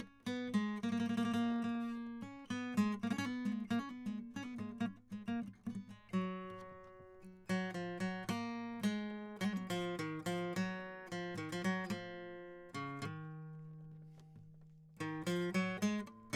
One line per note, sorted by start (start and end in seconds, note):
0.01 0.25 C#4
0.27 0.65 B3
0.55 0.84 G#3
0.84 0.94 A#3
0.94 1.01 A#3
1.02 1.11 A#3
1.11 1.19 A#3
1.19 1.26 A#3
1.27 1.35 A#3
1.36 1.64 A#3
1.64 2.23 A#3
2.23 2.48 C#4
2.51 2.79 B3
2.79 2.99 G#3
3.04 3.17 A#3
3.20 3.31 C#4
3.32 3.46 B3
3.46 3.67 G#3
3.46 3.55 B3
3.71 3.81 A#3
3.81 3.90 C#4
3.90 4.12 B3
4.07 4.22 G#3
4.12 4.35 A#3
4.37 4.45 C#4
4.45 4.55 B3
4.55 4.80 A#3
4.59 4.75 G#3
4.82 4.88 A#3
4.97 5.06 B3
5.08 5.15 B3
5.14 5.27 G#3
5.29 5.45 A#3
5.68 5.93 B3
5.90 6.12 G#3
6.15 7.48 F#3
7.50 7.74 F#3
7.76 8.01 F3
8.02 8.26 F#3
8.30 8.90 A#3
8.85 9.39 G#3
9.42 9.54 G#3
9.54 9.70 F#3
9.71 10.00 F3
10.00 10.25 D#3
10.27 10.55 F3
10.58 11.11 F#3
11.13 11.38 F3
11.39 11.56 D#3
11.53 11.66 F3
11.66 11.89 F#3
11.92 12.73 F3
12.76 13.02 C#3
13.03 15.01 D#3
15.01 15.26 D#3
15.01 15.17 D#3
15.28 15.53 F3
15.55 15.81 F#3
15.83 16.05 G#3